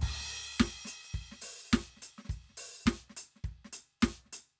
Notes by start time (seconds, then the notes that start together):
0.01 kick, snare, hi-hat pedal, ride
0.20 snare
0.30 open hi-hat
0.59 kick, snare, hi-hat pedal
0.85 open hi-hat, snare
1.04 closed hi-hat
1.14 kick, closed hi-hat
1.32 snare
1.42 open hi-hat, snare
1.71 kick, snare, closed hi-hat, hi-hat pedal
1.97 snare
2.02 open hi-hat
2.18 snare
2.25 snare
2.29 closed hi-hat, kick, snare
2.49 kick, snare
2.57 open hi-hat
2.84 kick, snare, closed hi-hat, hi-hat pedal
3.10 snare
3.17 open hi-hat
3.36 snare
3.44 kick, closed hi-hat, hi-hat pedal
3.65 snare
3.73 closed hi-hat
4.01 closed hi-hat, kick, snare, hi-hat pedal
4.26 snare
4.33 closed hi-hat